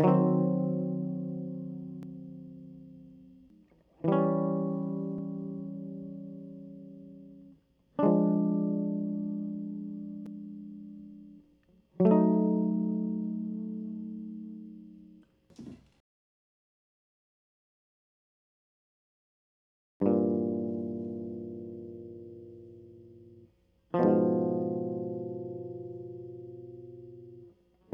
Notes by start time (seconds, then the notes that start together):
0.00 D#3 F#3
0.06 D3 C4
0.61 D#3
4.05 E3 G3
4.12 C#4
7.99 D4
8.03 F3 G#3
12.01 F#3
12.06 A3
12.11 D#4
20.03 G2 A#2
20.12 E3
23.95 F3
24.00 B2
24.06 G#2